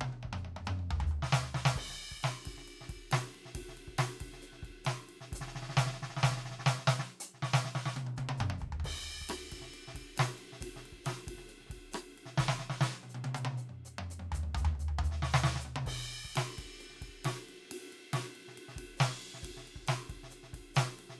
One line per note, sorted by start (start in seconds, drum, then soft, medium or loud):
0.01 kick soft
0.01 high tom loud
0.13 high tom medium
0.23 kick soft
0.23 mid tom medium
0.37 hi-hat pedal soft
0.45 mid tom soft
0.57 mid tom medium
0.65 hi-hat pedal soft
0.65 mid tom loud
0.79 mid tom medium
0.91 floor tom loud
1.00 kick soft
1.00 floor tom loud
1.07 hi-hat pedal soft
1.11 floor tom medium
1.23 snare medium
1.28 hi-hat pedal soft
1.33 snare loud
1.43 snare medium
1.52 snare medium
1.52 hi-hat pedal soft
1.66 snare loud
1.76 kick medium
1.76 hi-hat pedal soft
1.76 crash loud
1.83 kick soft
1.88 kick soft
1.88 snare soft
2.12 kick soft
2.17 kick soft
2.24 snare medium
2.24 hi-hat pedal medium
2.24 ride medium
2.46 kick soft
2.46 ride medium
2.54 kick soft
2.54 snare soft
2.67 hi-hat pedal soft
2.67 ride medium
2.81 snare soft
2.89 kick soft
2.89 ride medium
2.96 kick soft
3.11 snare loud
3.11 hi-hat pedal medium
3.11 ride loud
3.35 ride soft
3.46 snare soft
3.55 kick soft
3.55 hi-hat pedal medium
3.55 ride loud
3.62 kick soft
3.66 kick soft
3.66 snare soft
3.77 ride medium
3.88 kick soft
3.93 kick soft
3.99 snare loud
3.99 hi-hat pedal medium
3.99 ride loud
4.21 kick soft
4.21 ride medium
4.28 kick soft
4.33 snare soft
4.42 hi-hat pedal medium
4.42 ride soft
4.53 snare soft
4.63 kick soft
4.63 ride soft
4.69 kick soft
4.84 snare medium
4.84 hi-hat pedal medium
4.84 ride medium
5.09 ride medium
5.21 snare soft
5.33 kick medium
5.33 hi-hat pedal loud
5.33 ride medium
5.40 kick soft
5.40 snare medium
5.48 snare medium
5.55 snare medium
5.62 snare medium
5.69 snare medium
5.77 kick soft
5.77 snare loud
5.87 snare medium
5.93 snare medium
6.03 snare medium
6.10 snare medium
6.17 snare medium
6.23 kick soft
6.23 snare loud
6.31 snare medium
6.37 snare medium
6.45 snare medium
6.51 snare medium
6.59 snare medium
6.66 snare loud
6.79 snare soft
6.88 snare loud
6.99 snare medium
7.10 cross-stick soft
7.20 closed hi-hat loud
7.34 snare soft
7.43 snare medium
7.48 hi-hat pedal soft
7.54 snare loud
7.65 snare medium
7.74 snare medium
7.74 hi-hat pedal medium
7.86 snare medium
7.94 kick soft
7.94 hi-hat pedal soft
7.94 high tom loud
8.07 high tom medium
8.17 kick soft
8.17 hi-hat pedal soft
8.17 high tom loud
8.23 kick soft
8.29 high tom loud
8.38 kick soft
8.38 hi-hat pedal medium
8.38 mid tom loud
8.46 kick soft
8.50 mid tom medium
8.59 kick soft
8.59 floor tom medium
8.59 hi-hat pedal soft
8.73 floor tom medium
8.80 floor tom medium
8.85 kick medium
8.85 hi-hat pedal soft
8.85 crash loud
8.98 kick soft
9.22 kick soft
9.29 cross-stick medium
9.29 hi-hat pedal medium
9.29 ride loud
9.52 kick soft
9.52 ride medium
9.58 kick soft
9.58 snare soft
9.73 hi-hat pedal soft
9.73 ride medium
9.88 snare soft
9.95 kick soft
9.95 ride medium
10.01 kick soft
10.16 snare loud
10.16 hi-hat pedal medium
10.16 ride loud
10.38 ride medium
10.53 snare soft
10.61 kick soft
10.61 hi-hat pedal medium
10.61 ride loud
10.68 kick soft
10.76 snare soft
10.86 ride medium
10.92 kick soft
10.97 kick soft
11.05 snare medium
11.05 hi-hat pedal medium
11.05 ride loud
11.27 kick soft
11.27 ride medium
11.34 kick soft
11.34 snare soft
11.49 hi-hat pedal medium
11.49 ride medium
11.60 snare soft
11.67 kick soft
11.67 snare soft
11.72 ride medium
11.76 kick soft
11.92 cross-stick medium
11.92 hi-hat pedal medium
11.92 ride loud
12.18 ride medium
12.26 snare soft
12.38 kick soft
12.38 snare loud
12.38 hi-hat pedal medium
12.46 kick soft
12.46 snare loud
12.59 snare medium
12.70 snare medium
12.81 snare loud
12.81 hi-hat pedal medium
12.94 cross-stick soft
13.03 high tom medium
13.10 hi-hat pedal medium
13.15 high tom medium
13.24 high tom loud
13.35 hi-hat pedal loud
13.35 high tom loud
13.45 high tom loud
13.57 hi-hat pedal medium
13.57 high tom soft
13.69 mid tom medium
13.84 hi-hat pedal loud
13.84 mid tom soft
13.99 mid tom loud
14.10 hi-hat pedal loud
14.20 mid tom medium
14.32 floor tom loud
14.32 hi-hat pedal loud
14.43 mid tom medium
14.55 hi-hat pedal medium
14.55 floor tom loud
14.65 floor tom loud
14.75 floor tom soft
14.80 hi-hat pedal medium
14.89 floor tom medium
14.99 floor tom loud
15.04 hi-hat pedal medium
15.12 snare soft
15.23 snare loud
15.32 snare loud
15.32 hi-hat pedal medium
15.44 snare loud
15.56 snare medium
15.60 kick soft
15.60 hi-hat pedal loud
15.65 high tom medium
15.76 high tom loud
15.86 kick medium
15.86 hi-hat pedal loud
15.86 crash loud
16.01 kick soft
16.08 hi-hat pedal soft
16.13 kick soft
16.25 kick soft
16.30 kick soft
16.36 snare loud
16.36 hi-hat pedal medium
16.36 ride loud
16.58 kick soft
16.58 ride medium
16.65 kick soft
16.77 snare soft
16.77 hi-hat pedal medium
16.77 ride medium
16.90 snare soft
16.94 snare soft
17.02 kick soft
17.02 ride medium
17.08 kick soft
17.24 snare loud
17.24 hi-hat pedal medium
17.24 ride loud
17.49 ride soft
17.72 ride loud
17.93 ride medium
18.14 snare loud
18.14 ride loud
18.36 ride soft
18.48 snare soft
18.58 ride medium
18.69 snare soft
18.74 kick soft
18.74 hi-hat pedal soft
18.79 ride medium
18.98 snare loud
18.98 hi-hat pedal medium
18.98 ride medium
19.22 ride medium
19.34 snare soft
19.42 kick soft
19.42 hi-hat pedal medium
19.42 ride medium
19.50 kick soft
19.57 snare soft
19.68 ride medium
19.76 kick soft
19.87 snare loud
19.87 hi-hat pedal medium
19.87 ride loud
20.10 kick soft
20.10 ride medium
20.16 kick soft
20.24 snare soft
20.31 hi-hat pedal medium
20.31 ride medium
20.43 snare soft
20.53 kick soft
20.53 ride medium
20.60 kick soft
20.75 snare loud
20.75 hi-hat pedal medium
20.75 ride loud
20.99 ride medium
21.10 snare soft